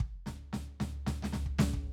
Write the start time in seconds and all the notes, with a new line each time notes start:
0.01 kick
0.27 snare, floor tom
0.54 snare, floor tom
0.81 snare, floor tom
1.07 snare, floor tom
1.23 snare, floor tom
1.33 snare, floor tom
1.47 kick
1.59 snare, floor tom
1.74 kick